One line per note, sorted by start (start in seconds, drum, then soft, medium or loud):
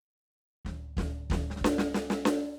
0.65 kick soft
0.65 snare medium
0.65 floor tom medium
0.97 kick medium
0.97 snare loud
0.97 floor tom loud
1.30 kick medium
1.30 snare loud
1.30 floor tom loud
1.50 snare medium
1.56 snare medium
1.61 kick medium
1.61 snare loud
1.78 snare loud
1.94 snare loud
2.10 snare loud
2.25 snare loud